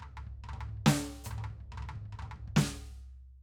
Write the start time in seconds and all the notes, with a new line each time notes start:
0.02 floor tom, high tom
0.17 floor tom
0.27 kick
0.44 high tom
0.49 floor tom
0.53 high tom
0.61 floor tom
0.69 kick
0.77 kick
0.86 snare
1.24 hi-hat pedal, high tom
1.31 floor tom
1.38 high tom
1.44 floor tom
1.50 kick
1.60 kick
1.72 high tom
1.77 floor tom
1.82 high tom
1.89 floor tom
1.95 kick
2.05 kick
2.12 high tom
2.19 floor tom, high tom
2.31 floor tom
2.36 kick
2.48 kick
2.56 snare